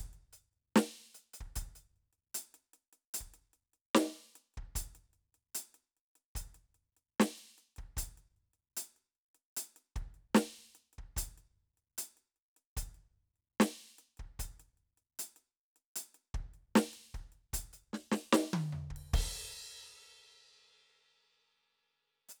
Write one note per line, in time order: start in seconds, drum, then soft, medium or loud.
0.04 kick soft
0.13 closed hi-hat soft
0.33 closed hi-hat soft
0.53 closed hi-hat soft
0.76 snare loud
1.14 closed hi-hat soft
1.34 closed hi-hat soft
1.40 kick soft
1.56 closed hi-hat medium
1.56 kick soft
1.75 closed hi-hat soft
1.96 closed hi-hat soft
2.13 closed hi-hat soft
2.34 closed hi-hat loud
2.54 closed hi-hat soft
2.73 closed hi-hat soft
2.93 closed hi-hat soft
3.14 closed hi-hat loud
3.20 kick soft
3.34 closed hi-hat soft
3.53 closed hi-hat soft
3.73 closed hi-hat soft
3.95 snare loud
4.14 closed hi-hat soft
4.35 closed hi-hat soft
4.54 kick soft
4.54 closed hi-hat soft
4.75 closed hi-hat loud
4.75 kick soft
4.95 closed hi-hat soft
5.13 closed hi-hat soft
5.34 closed hi-hat soft
5.55 closed hi-hat loud
5.74 closed hi-hat soft
5.97 closed hi-hat soft
6.15 closed hi-hat soft
6.35 closed hi-hat medium
6.35 kick soft
6.54 closed hi-hat soft
6.74 closed hi-hat soft
6.97 closed hi-hat soft
7.20 snare loud
7.38 closed hi-hat soft
7.58 closed hi-hat soft
7.76 kick soft
7.76 closed hi-hat soft
7.97 closed hi-hat loud
7.97 kick soft
8.17 closed hi-hat soft
8.36 closed hi-hat soft
8.53 closed hi-hat soft
8.77 closed hi-hat loud
8.96 closed hi-hat soft
9.15 closed hi-hat soft
9.35 closed hi-hat soft
9.57 closed hi-hat loud
9.76 closed hi-hat soft
9.96 kick medium
9.96 closed hi-hat soft
10.14 closed hi-hat soft
10.35 snare loud
10.53 closed hi-hat soft
10.75 closed hi-hat soft
10.93 closed hi-hat soft
10.98 kick soft
11.16 closed hi-hat loud
11.16 kick medium
11.38 closed hi-hat soft
11.77 closed hi-hat soft
11.98 closed hi-hat loud
12.17 closed hi-hat soft
12.36 closed hi-hat soft
12.56 closed hi-hat soft
12.77 closed hi-hat medium
12.77 kick medium
12.94 closed hi-hat soft
13.36 closed hi-hat soft
13.60 snare loud
13.79 closed hi-hat soft
13.98 closed hi-hat soft
14.17 kick soft
14.17 closed hi-hat soft
14.39 closed hi-hat medium
14.39 kick soft
14.60 closed hi-hat soft
14.77 closed hi-hat soft
14.97 closed hi-hat soft
15.19 closed hi-hat loud
15.36 closed hi-hat soft
15.76 closed hi-hat soft
15.96 closed hi-hat loud
16.14 closed hi-hat soft
16.34 kick medium
16.34 closed hi-hat soft
16.54 closed hi-hat soft
16.75 snare loud
16.93 closed hi-hat soft
17.14 kick soft
17.14 closed hi-hat soft
17.32 closed hi-hat soft
17.53 closed hi-hat loud
17.53 kick soft
17.73 closed hi-hat soft
17.93 snare medium
18.12 snare medium
18.33 snare loud
18.53 high tom loud
18.72 floor tom medium
18.90 kick soft
18.96 crash soft
19.13 kick loud
19.13 crash loud
22.29 hi-hat pedal medium